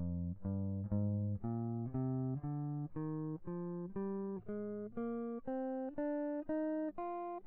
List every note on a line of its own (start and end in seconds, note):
0.00 0.37 F2
0.47 0.91 G2
0.94 1.40 G#2
1.46 1.89 A#2
1.89 1.95 B2
1.96 2.40 C3
2.46 2.89 D3
2.98 3.40 D#3
3.49 3.96 F3
3.97 4.42 G3
4.50 4.90 G#3
4.98 5.42 A#3
5.48 5.96 C4
5.99 6.45 D4
6.50 6.93 D#4
6.99 7.42 F4